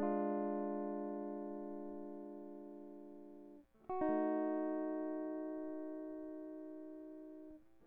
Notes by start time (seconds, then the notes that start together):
0.00 G#3 D4 F4
3.90 F#4
4.02 D#4
4.10 A3